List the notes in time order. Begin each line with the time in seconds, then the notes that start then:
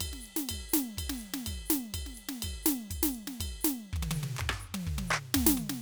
0.01 kick, ride bell
0.07 kick
0.13 snare
0.21 hi-hat pedal
0.26 ride
0.37 snare
0.49 kick, ride bell
0.69 hi-hat pedal
0.74 snare
0.98 kick, ride bell
1.04 kick
1.10 snare
1.17 hi-hat pedal
1.22 ride
1.34 snare
1.47 kick, ride bell
1.53 kick
1.66 hi-hat pedal
1.70 snare
1.94 kick, ride bell
2.07 snare
2.15 hi-hat pedal, ride
2.29 snare
2.43 kick, ride bell
2.50 kick
2.63 snare, hi-hat pedal
2.91 kick, ride bell
2.96 kick
3.03 snare
3.11 hi-hat pedal
3.15 ride
3.28 snare
3.40 kick, ride bell
3.46 kick
3.61 snare, hi-hat pedal
3.93 kick, mid tom
3.99 kick, mid tom
4.05 kick
4.11 hi-hat pedal, mid tom
4.23 mid tom
4.37 kick, percussion
4.47 kick, cross-stick
4.60 hi-hat pedal
4.74 high tom
4.87 kick
4.95 kick, high tom
5.08 percussion, hi-hat pedal
5.35 kick, snare
5.43 kick, snare
5.56 hi-hat pedal, mid tom
5.70 snare